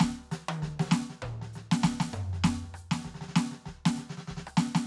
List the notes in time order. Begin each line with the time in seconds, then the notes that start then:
0.01 kick, snare
0.32 snare, hi-hat pedal
0.49 high tom
0.63 kick, snare
0.69 kick
0.80 snare
0.86 snare
0.92 snare, hi-hat pedal
1.10 snare
1.23 kick, mid tom
1.42 snare
1.54 snare, hi-hat pedal
1.72 snare
1.84 kick, snare
2.01 snare
2.13 floor tom, hi-hat pedal
2.34 snare
2.45 kick, snare
2.63 snare
2.75 cross-stick, hi-hat pedal
2.92 snare
3.06 kick, snare
3.15 snare
3.22 snare
3.29 snare
3.37 snare, hi-hat pedal
3.52 snare
3.67 kick, snare
3.86 snare
3.97 snare, hi-hat pedal
4.10 snare
4.18 snare
4.29 kick, snare
4.38 snare
4.48 cross-stick
4.58 snare, hi-hat pedal
4.76 snare